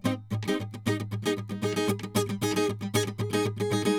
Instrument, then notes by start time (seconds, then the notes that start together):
acoustic guitar
0.05 C4 D#4
0.46 C4 D#4 G#4
0.88 D#4 G#4
1.27 D#4 G#4
1.52 D#4
1.64 D#4 G#4
1.78 D#4 G#4
2.17 D#4 G#4
2.43 D#4 G#4
2.58 D#4 G#4
2.96 D#4 G#4
3.21 G#4
3.34 D#4 G#4
3.61 G#4
3.73 D#4 G#4
3.87 G#3 D#4